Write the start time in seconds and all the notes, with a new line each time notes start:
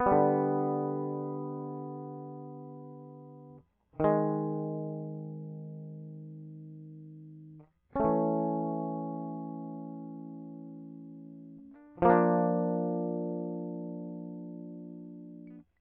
0.00 B3
0.06 G3
0.12 D3
4.00 D#3
4.04 G#3
7.95 C#4
8.00 A3
8.05 E3
12.02 F3 A#3
12.10 D4